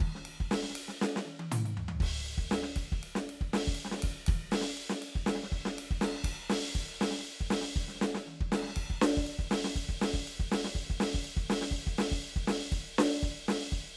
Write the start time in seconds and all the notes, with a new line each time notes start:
0.01 kick, crash
0.16 snare
0.26 ride
0.41 kick
0.52 snare, ride
0.64 snare
0.70 snare
0.76 ride
0.89 snare
1.02 snare
1.17 snare
1.26 high tom
1.40 high tom
1.52 hi-hat pedal, mid tom
1.66 mid tom
1.78 floor tom
1.89 floor tom
2.01 kick, ride
2.27 ride
2.38 kick
2.52 snare, ride
2.63 snare
2.77 kick, ride
2.93 kick
3.04 ride
3.16 snare
3.30 ride
3.42 kick
3.54 snare, ride
3.68 kick
3.76 ride
3.86 snare
3.92 snare
3.98 snare
4.03 kick, ride
4.27 kick, ride
4.52 snare, ride
4.62 snare
4.78 ride
4.90 snare
5.03 ride
5.16 kick
5.27 snare, ride
5.36 snare
5.44 snare
5.53 kick, ride
5.66 snare
5.79 ride
5.91 kick
6.02 snare, crash
6.25 kick, ride
6.50 snare, ride
6.76 kick, ride
7.02 snare, ride
7.12 snare
7.19 snare
7.26 ride
7.41 kick
7.51 snare, ride
7.62 snare
7.76 kick, ride
7.89 snare
7.96 snare
8.02 snare
8.15 snare
8.28 high tom
8.41 kick
8.53 snare, crash
8.63 snare
8.69 snare
8.77 kick, ride
8.91 kick
9.02 snare, ride
9.18 kick
9.27 ride
9.40 kick
9.52 snare, ride
9.65 snare
9.76 kick, ride
9.90 kick
10.02 snare, ride
10.14 kick
10.28 ride
10.40 kick
10.52 snare, ride
10.65 snare
10.76 kick, ride
10.91 kick
11.01 snare, ride
11.15 kick
11.25 ride
11.37 kick
11.51 snare, ride
11.62 snare
11.72 kick, ride
11.88 kick
11.99 snare, ride
12.12 kick
12.23 ride
12.37 kick
12.48 snare, ride
12.72 kick, ride
12.99 snare, ride
13.22 kick, ride
13.49 snare, ride
13.72 kick, ride